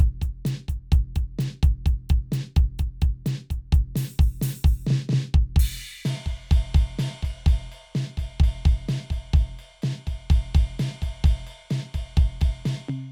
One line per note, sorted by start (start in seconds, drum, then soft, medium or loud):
0.01 closed hi-hat medium
0.01 kick loud
0.24 closed hi-hat medium
0.24 kick medium
0.47 closed hi-hat medium
0.47 snare loud
0.70 closed hi-hat medium
0.70 kick medium
0.94 closed hi-hat medium
0.94 kick loud
1.17 closed hi-hat medium
1.17 kick medium
1.41 closed hi-hat medium
1.41 snare loud
1.65 closed hi-hat medium
1.65 kick loud
1.88 closed hi-hat medium
1.88 kick loud
2.11 closed hi-hat medium
2.11 kick loud
2.34 closed hi-hat medium
2.34 snare loud
2.58 closed hi-hat medium
2.58 kick loud
2.81 closed hi-hat medium
2.81 kick medium
3.04 closed hi-hat medium
3.04 kick loud
3.28 closed hi-hat medium
3.28 snare loud
3.52 closed hi-hat medium
3.52 kick medium
3.74 closed hi-hat medium
3.74 kick loud
3.98 open hi-hat loud
3.98 snare loud
4.06 snare soft
4.21 open hi-hat medium
4.21 kick loud
4.21 snare soft
4.43 open hi-hat loud
4.43 snare loud
4.66 open hi-hat medium
4.66 kick loud
4.88 snare loud
4.88 hi-hat pedal soft
4.92 snare loud
5.11 snare loud
5.15 snare loud
5.36 kick loud
5.58 open hi-hat loud
5.58 kick loud
5.58 crash loud
6.05 snare loud
6.05 hi-hat pedal soft
6.05 ride loud
6.28 kick medium
6.28 ride soft
6.50 kick loud
6.50 hi-hat pedal soft
6.50 ride medium
6.76 kick loud
6.76 ride medium
7.01 snare loud
7.01 ride loud
7.25 kick medium
7.25 ride medium
7.48 kick loud
7.48 ride medium
7.74 ride medium
7.97 snare loud
7.97 ride medium
8.19 kick medium
8.19 ride medium
8.24 snare soft
8.42 kick loud
8.42 ride medium
8.67 kick loud
8.67 ride medium
8.91 snare loud
8.91 ride medium
9.12 kick medium
9.12 ride medium
9.35 kick loud
9.35 ride medium
9.61 ride medium
9.84 snare loud
9.84 ride medium
10.09 kick medium
10.09 ride medium
10.32 kick loud
10.32 ride medium
10.57 kick loud
10.57 ride medium
10.81 snare loud
10.81 ride loud
11.04 kick medium
11.04 ride medium
11.26 kick loud
11.26 ride medium
11.49 ride medium
11.72 snare loud
11.72 ride medium
11.96 kick medium
11.96 ride medium
12.19 kick loud
12.19 ride medium
12.43 kick loud
12.43 ride medium
12.67 snare loud
12.67 ride medium
12.91 floor tom loud
12.91 high tom loud